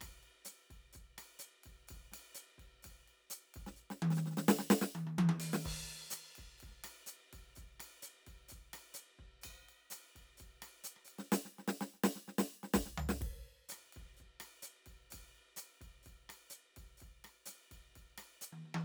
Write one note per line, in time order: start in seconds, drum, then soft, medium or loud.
0.01 kick soft
0.01 cross-stick soft
0.01 snare soft
0.01 ride medium
0.08 kick soft
0.24 ride soft
0.46 snare soft
0.46 hi-hat pedal medium
0.46 ride medium
0.71 kick soft
0.71 ride soft
0.93 kick soft
0.93 hi-hat pedal soft
0.93 ride soft
1.18 cross-stick soft
1.18 snare soft
1.18 ride medium
1.40 hi-hat pedal medium
1.40 ride soft
1.64 kick soft
1.64 ride soft
1.88 kick soft
1.88 hi-hat pedal soft
1.88 ride medium
1.96 kick soft
2.12 snare soft
2.12 ride medium
2.35 hi-hat pedal medium
2.35 ride soft
2.59 kick soft
2.59 ride soft
2.83 kick soft
2.83 snare soft
2.83 hi-hat pedal soft
2.83 ride medium
3.08 ride soft
3.31 hi-hat pedal medium
3.31 ride soft
3.55 kick soft
3.55 ride soft
3.62 kick soft
3.67 snare soft
3.77 hi-hat pedal soft
3.91 snare soft
4.03 high tom loud
4.11 snare soft
4.15 snare soft
4.15 hi-hat pedal soft
4.26 snare soft
4.32 snare soft
4.38 snare medium
4.49 snare loud
4.60 snare medium
4.71 snare loud
4.82 snare medium
4.96 high tom medium
5.08 high tom soft
5.19 high tom loud
5.30 open hi-hat soft
5.30 high tom loud
5.41 closed hi-hat medium
5.54 snare medium
5.66 kick soft
5.66 crash medium
5.72 kick soft
6.11 cross-stick soft
6.11 hi-hat pedal loud
6.11 ride medium
6.36 kick soft
6.36 ride soft
6.58 hi-hat pedal soft
6.58 ride soft
6.63 kick soft
6.63 snare soft
6.68 snare soft
6.70 snare soft
6.85 cross-stick soft
6.85 ride medium
7.07 hi-hat pedal medium
7.07 ride soft
7.34 kick soft
7.34 ride soft
7.39 kick soft
7.56 kick soft
7.56 hi-hat pedal soft
7.56 ride soft
7.63 kick soft
7.81 cross-stick soft
7.81 ride medium
8.03 hi-hat pedal medium
8.03 ride soft
8.27 kick soft
8.27 ride soft
8.49 kick soft
8.49 hi-hat pedal soft
8.49 ride soft
8.74 cross-stick soft
8.74 snare soft
8.74 ride medium
8.95 hi-hat pedal medium
9.19 kick soft
9.42 kick soft
9.42 cross-stick soft
9.42 hi-hat pedal soft
9.42 ride bell medium
9.69 ride soft
9.91 cross-stick soft
9.91 snare soft
9.91 hi-hat pedal medium
9.91 ride medium
10.16 kick soft
10.16 ride soft
10.38 kick soft
10.38 hi-hat pedal soft
10.38 ride soft
10.63 cross-stick soft
10.63 ride medium
10.85 hi-hat pedal medium
10.85 ride soft
10.97 cross-stick soft
11.05 hi-hat pedal soft
11.05 ride soft
11.19 snare soft
11.33 snare loud
11.33 hi-hat pedal medium
11.46 snare soft
11.59 snare soft
11.69 snare medium
11.82 snare medium
11.94 snare soft
12.04 snare loud
12.16 snare soft
12.29 snare soft
12.39 snare loud
12.64 snare soft
12.75 kick soft
12.75 snare loud
12.82 kick soft
12.86 snare soft
12.98 floor tom medium
13.10 snare medium
13.22 kick soft
13.22 crash medium
13.33 kick soft
13.70 cross-stick soft
13.70 hi-hat pedal medium
13.70 ride medium
13.93 kick soft
13.93 ride soft
14.02 kick soft
14.15 hi-hat pedal soft
14.15 ride soft
14.21 kick soft
14.41 cross-stick soft
14.41 snare soft
14.41 ride medium
14.63 hi-hat pedal medium
14.63 ride soft
14.87 kick soft
14.87 ride soft
15.11 kick soft
15.11 snare soft
15.11 hi-hat pedal soft
15.11 ride medium
15.35 ride soft
15.57 cross-stick soft
15.57 hi-hat pedal medium
15.57 ride medium
15.82 kick soft
15.82 ride soft
15.87 kick soft
16.03 kick soft
16.03 hi-hat pedal soft
16.03 ride soft
16.30 cross-stick soft
16.30 snare soft
16.30 ride medium
16.51 hi-hat pedal medium
16.55 ride soft
16.77 kick soft
16.77 ride soft
16.98 hi-hat pedal soft
16.98 ride soft
17.02 kick soft
17.25 cross-stick soft
17.25 snare soft
17.25 ride soft
17.46 snare soft
17.46 hi-hat pedal medium
17.46 ride medium
17.72 kick soft
17.72 ride soft
17.96 kick soft
17.96 ride soft
18.19 cross-stick soft
18.19 snare soft
18.19 ride medium
18.42 hi-hat pedal medium
18.53 high tom soft
18.66 high tom soft
18.75 high tom medium